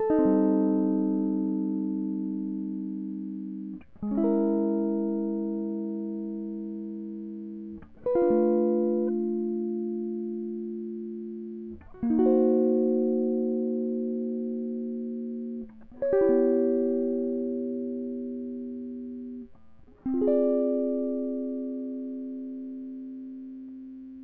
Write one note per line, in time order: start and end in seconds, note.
0.00 2.58 A4
0.10 3.79 D#4
0.19 3.85 C4
0.26 3.79 G3
4.03 7.80 G#3
4.11 6.49 C#4
4.17 7.81 E4
4.24 7.13 A#4
8.06 9.10 B4
8.15 11.77 F4
8.23 11.19 D4
8.31 11.78 A3
12.03 15.62 A#3
12.10 15.62 D#4
12.19 15.66 F#4
12.26 15.40 C5
16.02 18.58 C#5
16.13 19.45 G4
16.21 18.97 E4
16.29 19.44 B3
20.06 24.23 C4
20.14 22.83 F4
20.21 22.53 G#4
20.27 22.01 D5